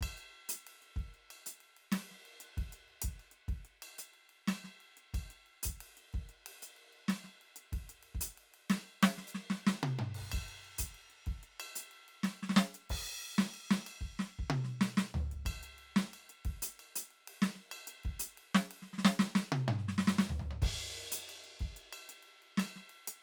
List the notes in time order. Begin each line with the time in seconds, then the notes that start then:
0.01 kick, ride bell
0.17 closed hi-hat
0.32 ride
0.49 closed hi-hat
0.67 ride
0.82 closed hi-hat
0.96 kick, ride
1.14 closed hi-hat
1.30 ride bell
1.46 closed hi-hat
1.60 ride
1.77 ride
1.92 snare, ride
2.11 snare
2.25 ride
2.40 closed hi-hat
2.57 kick, cross-stick, floor tom, ride
2.72 closed hi-hat
2.88 ride
3.02 kick, closed hi-hat
3.19 ride bell
3.31 closed hi-hat
3.48 kick, ride
3.65 closed hi-hat
3.82 ride bell
3.98 closed hi-hat
4.14 ride
4.29 ride
4.47 snare, ride bell
4.64 snare
4.80 ride
4.97 closed hi-hat
5.14 kick, ride bell
5.30 closed hi-hat
5.46 ride
5.63 closed hi-hat, kick
5.81 ride
5.97 closed hi-hat
6.13 kick, ride
6.29 closed hi-hat
6.46 ride
6.62 closed hi-hat
6.76 ride
6.93 ride
7.08 snare, ride bell
7.24 snare
7.41 ride
7.56 closed hi-hat
7.72 kick, cross-stick, floor tom, ride
7.89 closed hi-hat
8.03 ride
8.15 kick
8.21 closed hi-hat
8.37 ride
8.54 ride
8.70 snare, ride bell
9.03 snare, ride
9.17 snare
9.27 hi-hat pedal
9.34 snare
9.50 snare
9.67 snare
9.83 high tom
9.99 mid tom
10.14 crash
10.19 kick
10.32 kick, hi-hat pedal, ride bell
10.48 closed hi-hat
10.64 ride
10.78 closed hi-hat, kick
10.94 ride
11.10 closed hi-hat
11.26 kick, ride
11.43 closed hi-hat
11.60 ride bell
11.75 closed hi-hat
11.91 ride
12.08 ride
12.23 snare, ride bell
12.42 snare
12.49 snare
12.56 snare
12.74 closed hi-hat
12.90 kick, crash
13.07 closed hi-hat
13.21 ride bell
13.38 snare
13.54 ride bell
13.71 snare
13.86 ride bell
14.01 kick
14.19 snare
14.39 kick
14.50 high tom
14.64 snare
14.81 snare
14.97 snare
15.14 floor tom
15.31 kick, closed hi-hat
15.45 kick, ride bell
15.63 closed hi-hat
15.78 ride
15.96 snare
16.13 ride bell
16.29 closed hi-hat
16.45 kick, ride
16.62 closed hi-hat
16.79 ride bell
16.95 closed hi-hat
17.11 ride
17.27 ride
17.42 snare
17.55 snare
17.71 ride bell
17.87 closed hi-hat
18.03 kick, ride
18.19 closed hi-hat
18.37 ride
18.54 snare
18.71 ride
18.82 snare
18.93 snare
18.98 snare
19.05 snare
19.19 snare
19.35 snare
19.52 high tom
19.68 mid tom
19.78 snare
19.88 snare
19.98 snare
20.07 snare
20.18 snare
20.29 floor tom
20.51 floor tom
20.62 kick, ride
20.79 closed hi-hat
20.95 ride
21.12 closed hi-hat
21.29 ride bell
21.44 closed hi-hat
21.60 kick, ride
21.76 closed hi-hat
21.93 ride bell
22.09 closed hi-hat
22.23 ride
22.42 ride
22.57 snare, ride bell
22.76 snare
22.89 ride
23.07 closed hi-hat